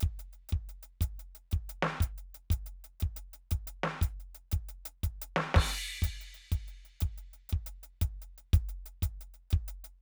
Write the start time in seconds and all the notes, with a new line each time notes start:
0.01 closed hi-hat, kick
0.20 closed hi-hat
0.33 closed hi-hat
0.49 closed hi-hat, kick
0.70 closed hi-hat
0.83 closed hi-hat
1.01 closed hi-hat, kick
1.20 closed hi-hat
1.36 closed hi-hat
1.52 closed hi-hat, kick
1.70 closed hi-hat
1.83 snare
2.01 closed hi-hat, kick
2.18 closed hi-hat
2.35 closed hi-hat
2.51 kick, closed hi-hat
2.67 closed hi-hat
2.85 closed hi-hat
3.01 closed hi-hat, kick
3.17 closed hi-hat
3.34 closed hi-hat
3.51 kick, closed hi-hat
3.68 closed hi-hat
3.84 snare
4.02 open hi-hat, kick
4.21 closed hi-hat
4.35 closed hi-hat
4.52 kick, closed hi-hat
4.69 closed hi-hat
4.86 closed hi-hat
5.04 closed hi-hat, kick
5.22 closed hi-hat
5.37 snare
5.55 kick, snare, crash
6.03 closed hi-hat, kick
6.07 kick
6.22 closed hi-hat
6.35 closed hi-hat
6.52 closed hi-hat, kick
6.68 closed hi-hat
6.86 closed hi-hat
7.01 closed hi-hat, kick
7.18 closed hi-hat
7.34 closed hi-hat
7.50 closed hi-hat, kick
7.67 closed hi-hat
7.84 closed hi-hat
8.02 kick, closed hi-hat
8.22 closed hi-hat
8.38 closed hi-hat
8.54 closed hi-hat, kick
8.69 closed hi-hat
8.86 closed hi-hat
9.03 kick, closed hi-hat
9.21 closed hi-hat
9.34 closed hi-hat
9.51 closed hi-hat, kick
9.69 closed hi-hat
9.85 closed hi-hat